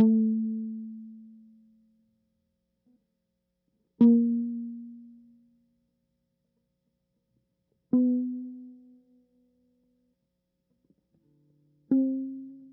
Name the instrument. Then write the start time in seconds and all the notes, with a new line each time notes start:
electric guitar
0.00 A3
0.10 A3
4.02 A#3
7.94 B3
11.92 C4